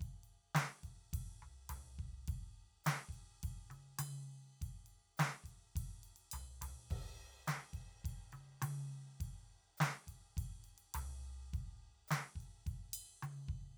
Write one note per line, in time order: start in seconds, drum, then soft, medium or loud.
0.01 kick soft
0.01 ride soft
0.24 ride soft
0.55 snare medium
0.55 hi-hat pedal medium
0.55 ride medium
0.84 kick soft
0.84 ride soft
1.13 kick soft
1.13 ride medium
1.43 floor tom soft
1.70 floor tom medium
1.70 hi-hat pedal medium
1.70 ride medium
1.99 kick soft
2.28 kick soft
2.28 ride soft
2.84 snare medium
2.84 hi-hat pedal medium
2.84 ride medium
3.09 kick soft
3.09 ride soft
3.43 kick soft
3.43 ride soft
3.70 high tom soft
3.70 ride soft
3.99 hi-hat pedal medium
3.99 high tom medium
3.99 ride bell medium
4.62 kick soft
4.62 ride soft
4.86 ride soft
5.17 snare medium
5.17 hi-hat pedal medium
5.17 ride medium
5.44 kick soft
5.44 ride soft
5.76 kick soft
5.76 ride medium
6.04 ride soft
6.16 ride soft
6.32 floor tom medium
6.32 hi-hat pedal medium
6.32 ride bell medium
6.62 floor tom medium
6.62 ride medium
6.91 kick soft
6.91 crash soft
7.47 snare medium
7.47 hi-hat pedal medium
7.47 ride medium
7.74 kick soft
7.74 ride soft
8.05 kick soft
8.05 ride soft
8.33 high tom soft
8.33 ride soft
8.62 hi-hat pedal medium
8.62 high tom medium
8.62 ride medium
9.21 kick soft
9.21 ride soft
9.78 snare medium
9.78 hi-hat pedal medium
9.82 ride medium
10.08 kick soft
10.08 ride soft
10.37 kick soft
10.37 ride soft
10.64 ride soft
10.78 ride soft
10.94 floor tom medium
10.94 hi-hat pedal medium
10.94 ride medium
11.54 kick soft
11.54 ride soft
12.08 snare medium
12.08 hi-hat pedal medium
12.12 ride medium
12.36 kick soft
12.41 ride soft
12.67 kick soft
12.67 ride soft
12.94 ride bell medium
13.23 hi-hat pedal medium
13.23 high tom medium
13.49 kick soft